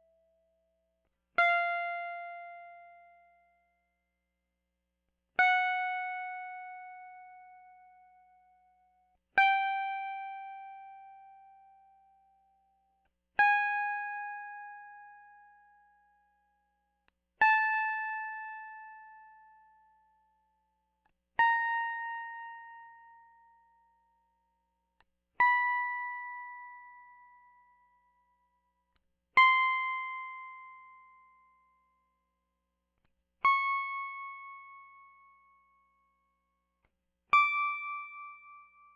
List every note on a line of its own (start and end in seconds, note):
1.39 3.31 F5
5.39 8.57 F#5
9.38 12.24 G5
13.39 15.97 G#5
17.42 20.05 A5
21.39 23.79 A#5
25.40 27.83 B5
29.38 31.60 C6
33.45 35.66 C#6
37.33 38.96 D6